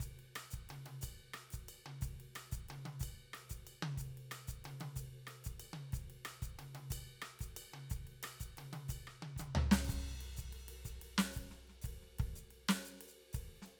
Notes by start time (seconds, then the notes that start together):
0.01 kick, hi-hat pedal, ride
0.20 ride
0.36 cross-stick, ride bell
0.51 kick, hi-hat pedal
0.70 high tom, ride
0.87 high tom, ride
1.02 kick, hi-hat pedal, ride bell
1.34 cross-stick, ride
1.51 kick, hi-hat pedal, ride
1.69 ride bell
1.87 high tom
2.02 kick, hi-hat pedal, ride
2.21 ride
2.36 cross-stick, ride bell
2.52 kick, hi-hat pedal
2.69 high tom, ride
2.86 high tom, ride
3.00 kick, hi-hat pedal, ride bell
3.34 cross-stick, ride
3.50 kick, hi-hat pedal, ride
3.68 ride bell
3.83 high tom
3.98 kick, hi-hat pedal, ride
4.18 ride
4.32 cross-stick, ride bell
4.48 kick, hi-hat pedal
4.65 high tom, ride
4.70 hi-hat pedal
4.81 high tom, ride
4.97 kick, hi-hat pedal, ride
5.28 cross-stick, ride
5.45 kick, hi-hat pedal, ride
5.60 ride bell
5.74 high tom
5.93 kick, hi-hat pedal, ride
6.11 ride
6.26 cross-stick, ride bell
6.43 kick, hi-hat pedal
6.60 high tom, ride
6.76 high tom, ride
6.91 kick, hi-hat pedal, ride bell
7.23 cross-stick, ride
7.40 kick, hi-hat pedal, ride
7.57 ride bell
7.63 hi-hat pedal
7.74 high tom
7.91 kick, hi-hat pedal, ride
8.08 ride
8.24 cross-stick, ride bell
8.41 kick, hi-hat pedal
8.58 high tom, ride
8.74 high tom, ride
8.89 kick, hi-hat pedal, ride bell
9.08 cross-stick
9.23 high tom
9.37 kick, hi-hat pedal, high tom
9.56 floor tom
9.72 snare
9.85 crash
9.90 kick, hi-hat pedal
10.22 ride
10.37 kick, hi-hat pedal
10.53 ride
10.60 hi-hat pedal
10.69 ride
10.86 kick, hi-hat pedal
11.02 ride
11.19 snare
11.34 kick, hi-hat pedal
11.38 ride
11.51 snare
11.68 snare, ride
11.82 kick, hi-hat pedal
11.86 ride
12.03 snare
12.19 kick, ride
12.36 hi-hat pedal
12.51 ride
12.69 snare, ride
12.86 hi-hat pedal
13.02 ride
13.09 hi-hat pedal
13.19 snare
13.34 kick, hi-hat pedal, ride
13.48 snare
13.56 hi-hat pedal
13.63 snare
13.67 ride